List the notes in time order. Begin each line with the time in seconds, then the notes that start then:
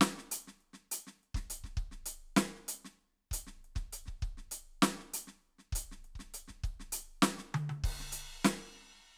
0.01 snare
0.18 snare
0.32 closed hi-hat
0.48 snare
0.61 closed hi-hat
0.73 snare
0.92 closed hi-hat
1.07 snare
1.23 closed hi-hat
1.34 kick, snare
1.50 closed hi-hat
1.64 kick, snare
1.77 kick, closed hi-hat
1.91 snare
2.06 closed hi-hat
2.37 snare
2.56 snare
2.68 closed hi-hat
2.85 snare
3.01 closed hi-hat
3.31 closed hi-hat, kick
3.47 snare
3.64 closed hi-hat
3.75 kick, snare
3.93 closed hi-hat
4.06 kick, snare
4.22 kick, closed hi-hat
4.37 snare
4.51 closed hi-hat
4.82 snare
4.99 snare
5.14 closed hi-hat
5.27 snare
5.59 snare
5.73 closed hi-hat, kick
5.92 snare
6.04 closed hi-hat
6.15 kick
6.19 snare
6.34 closed hi-hat
6.48 kick, snare
6.64 kick, closed hi-hat
6.80 snare
6.92 closed hi-hat
7.22 snare
7.38 snare
7.54 high tom
7.69 high tom
7.84 kick, crash
8.00 snare
8.12 closed hi-hat
8.45 snare